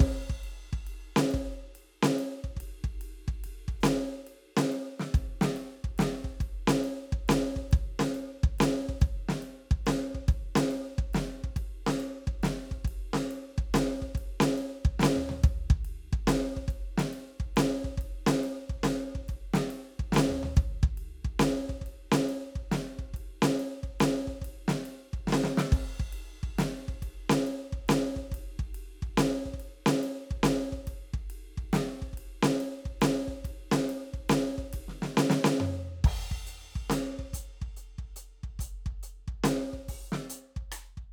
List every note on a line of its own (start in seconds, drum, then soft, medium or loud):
0.01 kick loud
0.01 crash medium
0.30 kick medium
0.44 ride soft
0.73 kick medium
0.88 ride medium
1.17 snare loud
1.32 kick medium
1.32 ride medium
1.52 hi-hat pedal soft
1.75 hi-hat pedal soft
1.75 ride medium
2.03 snare loud
2.19 ride medium
2.45 kick medium
2.57 kick medium
2.57 ride medium
2.85 kick medium
3.02 ride medium
3.29 kick medium
3.45 kick soft
3.45 ride medium
3.69 kick medium
3.81 snare loud
3.81 hi-hat pedal soft
3.81 ride medium
4.28 ride medium
4.58 snare loud
4.73 ride soft
5.00 snare medium
5.15 kick loud
5.15 ride medium
5.42 snare loud
5.57 ride medium
5.85 kick medium
5.99 snare loud
5.99 ride medium
6.25 kick medium
6.41 kick medium
6.41 ride soft
6.68 snare loud
6.85 ride medium
7.13 kick medium
7.29 snare loud
7.29 ride medium
7.57 kick medium
7.72 kick loud
7.72 ride medium
8.00 snare loud
8.15 ride medium
8.44 kick loud
8.59 snare loud
8.59 ride medium
8.89 kick medium
9.02 kick loud
9.02 ride soft
9.29 snare loud
9.43 ride medium
9.72 kick loud
9.87 snare loud
9.87 ride soft
10.15 kick medium
10.29 kick loud
10.29 ride soft
10.56 snare loud
10.72 ride soft
10.99 kick loud
11.14 snare loud
11.14 ride medium
11.44 kick medium
11.57 kick medium
11.57 ride medium
11.87 snare loud
12.01 ride medium
12.28 kick medium
12.44 snare loud
12.44 ride medium
12.72 kick medium
12.85 kick medium
12.85 ride medium
13.14 snare loud
13.32 ride medium
13.59 kick medium
13.75 snare loud
13.75 ride medium
14.03 kick medium
14.16 kick medium
14.16 ride medium
14.41 snare loud
14.59 ride soft
14.86 kick loud
15.00 snare loud
15.04 snare loud
15.17 floor tom medium
15.30 floor tom loud
15.44 kick loud
15.44 ride medium
15.71 kick loud
15.86 ride medium
16.13 kick loud
16.28 snare loud
16.28 ride medium
16.57 kick medium
16.69 kick medium
16.69 ride soft
16.98 snare loud
17.14 ride medium
17.41 kick medium
17.57 snare loud
17.57 ride medium
17.85 kick medium
17.98 kick medium
17.98 ride medium
18.27 snare loud
18.44 ride medium
18.70 kick medium
18.78 kick soft
18.84 snare loud
18.84 ride medium
19.16 kick medium
19.29 kick medium
19.29 ride soft
19.54 snare loud
19.71 ride medium
20.00 kick medium
20.13 snare loud
20.17 snare loud
20.30 floor tom medium
20.44 floor tom medium
20.57 kick loud
20.57 ride soft
20.84 kick loud
20.98 ride medium
21.25 kick medium
21.40 snare loud
21.40 ride medium
21.70 kick medium
21.82 kick medium
21.87 ride soft
22.13 snare loud
22.30 ride medium
22.56 kick medium
22.65 kick soft
22.72 snare loud
22.72 ride medium
22.99 kick medium
23.14 kick medium
23.14 ride medium
23.43 snare loud
23.60 ride medium
23.84 kick medium
24.01 snare loud
24.01 ride medium
24.28 kick medium
24.42 kick medium
24.42 ride medium
24.69 snare loud
24.86 ride medium
25.14 kick medium
25.28 snare loud
25.33 snare loud
25.44 snare medium
25.58 snare loud
25.73 kick loud
25.73 crash medium
26.00 kick medium
26.13 ride medium
26.44 kick medium
26.59 snare loud
26.59 ride medium
26.89 kick medium
27.03 kick medium
27.03 ride medium
27.30 snare loud
27.48 ride medium
27.73 kick medium
27.89 snare loud
27.89 ride medium
28.17 kick medium
28.32 kick medium
28.32 ride medium
28.60 kick medium
28.75 ride medium
29.03 kick medium
29.18 snare loud
29.18 ride medium
29.46 kick soft
29.54 kick medium
29.61 ride medium
29.87 snare loud
30.04 ride medium
30.31 kick medium
30.44 snare loud
30.44 ride medium
30.73 kick medium
30.88 kick medium
30.88 ride medium
31.14 kick medium
31.31 ride medium
31.58 kick medium
31.74 snare loud
31.74 ride medium
32.03 kick medium
32.14 kick soft
32.18 ride medium
32.43 snare loud
32.61 ride medium
32.86 kick medium
33.02 snare loud
33.02 ride medium
33.28 kick soft
33.45 kick medium
33.45 ride medium
33.72 snare loud
33.90 ride medium
34.14 kick medium
34.30 snare loud
34.30 ride medium
34.59 kick medium
34.74 kick medium
34.74 ride medium
34.89 snare soft
35.03 snare medium
35.18 snare loud
35.31 snare loud
35.45 snare loud
35.45 hi-hat pedal soft
35.61 mid tom loud
36.05 kick loud
36.05 crash loud
36.32 kick medium
36.47 closed hi-hat medium
36.76 kick medium
36.91 closed hi-hat loud
36.91 snare loud
37.19 kick medium
37.34 closed hi-hat loud
37.34 kick medium
37.62 kick medium
37.77 closed hi-hat medium
37.99 kick medium
38.17 closed hi-hat medium
38.44 kick medium
38.60 closed hi-hat medium
38.60 kick medium
38.87 kick medium
39.04 closed hi-hat medium
39.28 kick medium
39.44 closed hi-hat loud
39.44 snare loud
39.74 kick soft
39.89 open hi-hat medium
39.89 kick medium
40.08 hi-hat pedal soft
40.13 snare medium
40.31 closed hi-hat loud
40.57 kick medium
40.73 closed hi-hat loud
40.73 cross-stick medium
40.85 hi-hat pedal soft
40.98 kick soft